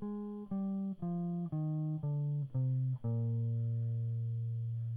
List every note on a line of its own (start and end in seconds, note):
0.02 0.47 G#3
0.52 0.95 G3
1.03 1.49 F3
1.53 2.00 D#3
2.04 2.48 D3
2.56 2.97 C3
3.05 4.96 A#2